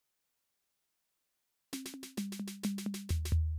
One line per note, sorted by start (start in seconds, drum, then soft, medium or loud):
1.73 snare medium
1.73 high tom medium
1.86 snare medium
1.94 high tom medium
2.03 snare medium
2.18 snare medium
2.18 mid tom loud
2.32 snare medium
2.40 mid tom medium
2.48 snare medium
2.64 snare medium
2.64 mid tom loud
2.78 snare medium
2.86 mid tom loud
2.94 snare medium
3.09 snare medium
3.09 floor tom loud
3.26 snare medium
3.32 floor tom loud